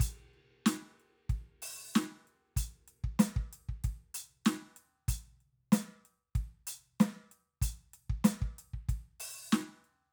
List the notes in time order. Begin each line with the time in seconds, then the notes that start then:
0.01 closed hi-hat, kick
0.34 closed hi-hat
0.67 closed hi-hat, snare
1.01 closed hi-hat
1.31 kick, closed hi-hat
1.63 open hi-hat
1.95 snare, closed hi-hat, hi-hat pedal
2.28 closed hi-hat
2.58 closed hi-hat, kick
2.89 closed hi-hat
3.05 kick
3.20 closed hi-hat, snare
3.37 kick
3.54 closed hi-hat
3.70 kick
3.85 kick, closed hi-hat
4.15 open hi-hat
4.46 snare, closed hi-hat, hi-hat pedal
4.77 closed hi-hat
5.09 closed hi-hat, kick
5.41 closed hi-hat
5.73 closed hi-hat, snare
6.06 closed hi-hat
6.36 kick, closed hi-hat
6.68 open hi-hat
7.01 snare, closed hi-hat, hi-hat pedal
7.33 closed hi-hat
7.63 closed hi-hat, kick
7.95 closed hi-hat
8.11 kick
8.25 closed hi-hat, snare
8.43 kick
8.59 closed hi-hat
8.75 kick
8.90 kick, closed hi-hat
9.21 open hi-hat
9.53 snare, closed hi-hat, hi-hat pedal
9.85 closed hi-hat